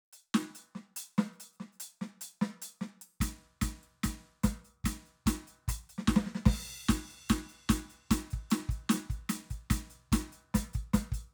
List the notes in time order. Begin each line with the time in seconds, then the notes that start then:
0.13 closed hi-hat
0.35 snare
0.55 closed hi-hat
0.76 snare
0.97 closed hi-hat
1.18 snare
1.33 hi-hat pedal
1.40 closed hi-hat
1.53 hi-hat pedal
1.60 snare
1.73 hi-hat pedal
1.80 closed hi-hat
2.02 snare
2.21 closed hi-hat
2.42 snare
2.62 closed hi-hat
2.82 snare
3.02 closed hi-hat
3.21 closed hi-hat, kick, snare
3.62 closed hi-hat, kick, snare
3.84 closed hi-hat
4.04 closed hi-hat, kick, snare
4.44 closed hi-hat, kick, snare
4.65 closed hi-hat
4.85 closed hi-hat, kick, snare
5.06 closed hi-hat
5.27 closed hi-hat, kick, snare
5.36 kick
5.48 closed hi-hat
5.68 closed hi-hat, kick, cross-stick
5.90 closed hi-hat
5.98 snare
6.08 kick, snare
6.16 kick, snare
6.35 snare
6.46 kick, snare, crash
6.66 closed hi-hat
6.89 closed hi-hat, kick, snare
7.10 closed hi-hat
7.30 closed hi-hat, kick, snare
7.49 closed hi-hat
7.70 closed hi-hat, kick, snare
7.90 closed hi-hat
8.11 closed hi-hat, kick, snare
8.31 closed hi-hat, kick
8.51 closed hi-hat, snare
8.69 closed hi-hat, kick
8.90 closed hi-hat, snare
8.94 snare
9.10 closed hi-hat, kick
9.19 kick
9.30 closed hi-hat, snare
9.51 closed hi-hat, kick
9.71 closed hi-hat, kick, snare
9.90 closed hi-hat
10.12 closed hi-hat, kick, snare
10.33 closed hi-hat
10.55 closed hi-hat, kick, snare
10.74 closed hi-hat, kick
10.94 closed hi-hat, kick, snare
11.12 closed hi-hat, kick